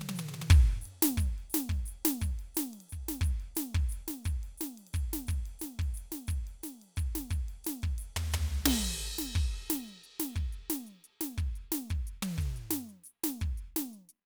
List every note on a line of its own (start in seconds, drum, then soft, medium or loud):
0.01 high tom medium
0.09 high tom medium
0.16 hi-hat pedal medium
0.16 mid tom medium
0.28 mid tom medium
0.34 mid tom medium
0.41 mid tom medium
0.50 kick loud
0.50 hi-hat pedal medium
0.50 ride medium
0.81 hi-hat pedal medium
0.85 ride soft
1.02 snare loud
1.17 kick medium
1.17 hi-hat pedal medium
1.17 ride soft
1.38 ride soft
1.50 hi-hat pedal medium
1.54 snare medium
1.54 ride soft
1.69 kick medium
1.69 ride soft
1.85 hi-hat pedal medium
1.85 ride soft
2.05 snare medium
2.05 ride soft
2.21 kick medium
2.21 hi-hat pedal medium
2.21 ride soft
2.39 ride soft
2.54 snare medium
2.54 hi-hat pedal medium
2.54 ride soft
2.73 ride soft
2.80 ride soft
2.89 kick soft
2.89 hi-hat pedal medium
2.89 ride soft
3.08 snare medium
3.08 ride soft
3.21 kick medium
3.21 hi-hat pedal medium
3.21 ride soft
3.40 ride soft
3.55 snare medium
3.55 hi-hat pedal medium
3.55 ride soft
3.74 kick medium
3.74 ride soft
3.89 hi-hat pedal medium
3.89 ride soft
4.08 snare medium
4.08 ride soft
4.24 kick medium
4.24 hi-hat pedal medium
4.24 ride soft
4.43 ride soft
4.57 snare medium
4.57 hi-hat pedal medium
4.57 ride soft
4.77 ride soft
4.87 ride soft
4.93 kick medium
4.93 hi-hat pedal medium
4.93 ride soft
5.13 snare medium
5.13 ride soft
5.27 kick medium
5.27 hi-hat pedal medium
5.31 ride soft
5.45 ride soft
5.59 snare soft
5.59 hi-hat pedal medium
5.64 ride soft
5.79 kick medium
5.79 ride soft
5.94 hi-hat pedal medium
5.94 ride soft
6.12 snare soft
6.12 ride soft
6.27 kick medium
6.27 hi-hat pedal medium
6.27 ride soft
6.47 ride soft
6.63 snare soft
6.63 hi-hat pedal medium
6.63 ride soft
6.81 ride soft
6.96 kick medium
6.96 hi-hat pedal medium
6.96 ride soft
7.15 snare medium
7.15 ride soft
7.30 kick medium
7.30 hi-hat pedal medium
7.30 ride soft
7.48 ride soft
7.64 snare medium
7.64 hi-hat pedal medium
7.64 ride soft
7.82 kick medium
7.82 ride soft
7.98 hi-hat pedal medium
7.98 ride soft
8.16 floor tom loud
8.32 floor tom loud
8.32 hi-hat pedal medium
8.65 snare loud
8.65 hi-hat pedal medium
8.65 crash loud
9.01 closed hi-hat medium
9.17 snare medium
9.17 closed hi-hat soft
9.35 kick medium
9.35 closed hi-hat soft
9.53 closed hi-hat soft
9.70 snare medium
9.70 closed hi-hat medium
9.88 closed hi-hat soft
10.03 closed hi-hat soft
10.19 snare medium
10.19 closed hi-hat medium
10.36 kick medium
10.36 closed hi-hat soft
10.52 closed hi-hat soft
10.70 snare medium
10.70 closed hi-hat medium
10.86 closed hi-hat soft
11.04 closed hi-hat medium
11.21 snare medium
11.21 closed hi-hat soft
11.38 kick medium
11.38 closed hi-hat soft
11.55 closed hi-hat soft
11.72 snare medium
11.72 closed hi-hat medium
11.90 kick medium
11.90 closed hi-hat soft
12.07 closed hi-hat medium
12.22 closed hi-hat medium
12.22 high tom loud
12.38 kick medium
12.38 closed hi-hat medium
12.56 closed hi-hat soft
12.70 snare medium
12.70 closed hi-hat medium
12.89 closed hi-hat soft
13.03 closed hi-hat soft
13.03 hi-hat pedal medium
13.23 snare medium
13.23 closed hi-hat soft
13.41 kick medium
13.41 closed hi-hat soft
13.57 closed hi-hat soft
13.76 snare medium
13.76 closed hi-hat medium
13.93 closed hi-hat soft
14.09 closed hi-hat medium